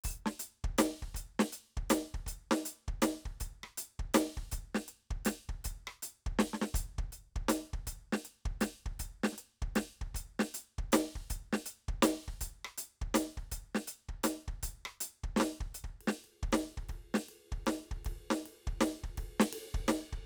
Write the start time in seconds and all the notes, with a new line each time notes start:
0.05 open hi-hat, kick
0.26 snare
0.39 closed hi-hat
0.64 kick
0.78 closed hi-hat, snare
1.02 kick
1.14 closed hi-hat, kick
1.39 snare
1.52 closed hi-hat
1.77 kick
1.90 closed hi-hat, snare
2.14 kick
2.26 closed hi-hat, kick
2.51 snare
2.65 closed hi-hat
2.88 kick
3.02 closed hi-hat, snare
3.25 kick
3.40 closed hi-hat, kick
3.63 cross-stick
3.78 closed hi-hat
3.99 kick
4.14 closed hi-hat, snare
4.37 kick
4.52 closed hi-hat, kick
4.75 snare
4.88 closed hi-hat
5.10 kick
5.25 closed hi-hat, snare
5.49 kick
5.64 closed hi-hat, kick
5.87 cross-stick
6.02 closed hi-hat
6.26 kick
6.39 snare
6.53 snare
6.61 snare
6.74 closed hi-hat, kick
6.98 kick
7.12 closed hi-hat
7.36 kick
7.48 closed hi-hat, snare
7.73 kick
7.87 closed hi-hat, kick
8.12 snare
8.25 closed hi-hat
8.45 kick
8.61 closed hi-hat, snare
8.86 kick
8.90 snare
8.99 closed hi-hat, kick
9.23 snare
9.32 snare
9.38 closed hi-hat
9.62 kick
9.75 snare, closed hi-hat
10.01 kick
10.14 closed hi-hat, kick
10.39 snare
10.54 closed hi-hat
10.78 kick
10.92 closed hi-hat, snare
11.15 kick
11.30 closed hi-hat, kick
11.53 snare
11.66 closed hi-hat
11.88 kick
12.02 closed hi-hat, snare
12.28 kick
12.41 closed hi-hat, kick
12.65 cross-stick
12.78 closed hi-hat
13.01 kick
13.14 closed hi-hat, snare
13.37 kick
13.52 closed hi-hat, kick
13.75 snare
13.87 closed hi-hat
14.09 kick
14.23 closed hi-hat, snare
14.48 kick
14.63 closed hi-hat, kick
14.85 cross-stick
15.00 closed hi-hat
15.23 kick
15.36 snare
15.40 snare
15.60 kick
15.74 closed hi-hat
15.84 kick
16.01 ride
16.07 snare
16.24 ride
16.43 kick
16.52 snare, ride
16.77 kick
16.89 kick, ride
17.14 snare
17.29 ride
17.52 kick
17.66 snare, ride
17.91 kick
18.05 kick, ride
18.30 snare
18.46 ride
18.67 kick
18.81 snare, ride
19.03 kick
19.18 kick, ride
19.40 snare
19.53 ride
19.74 kick
19.88 snare, ride bell
20.12 kick